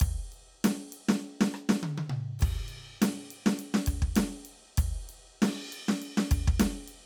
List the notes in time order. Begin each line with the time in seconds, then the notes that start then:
0.00 kick, ride
0.32 ride
0.64 snare, ride
0.92 ride
1.08 snare
1.41 snare
1.54 cross-stick
1.69 snare
1.83 high tom
1.98 high tom
2.10 mid tom
2.39 kick, crash, ride
2.68 ride
3.02 snare, ride
3.31 ride
3.46 snare
3.59 ride
3.74 snare
3.86 kick, ride
4.02 kick
4.16 snare, ride
4.45 ride
4.77 kick, ride
5.09 ride
5.42 snare, ride
5.72 ride
5.88 snare
6.02 ride
6.17 snare
6.31 kick, ride
6.47 kick
6.59 snare, ride
6.88 ride